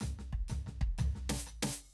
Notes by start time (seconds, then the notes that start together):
0.00 snare, floor tom, hi-hat pedal
0.19 snare, floor tom
0.33 kick
0.48 snare, floor tom, hi-hat pedal
0.66 snare, floor tom
0.81 kick
0.98 cross-stick, floor tom, hi-hat pedal
1.15 snare
1.29 snare
1.46 cross-stick, hi-hat pedal
1.62 snare, percussion